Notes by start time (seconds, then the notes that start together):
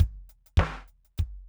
0.01 kick, closed hi-hat
0.30 closed hi-hat
0.47 closed hi-hat
0.58 kick, snare
0.89 closed hi-hat
1.06 closed hi-hat
1.19 kick, closed hi-hat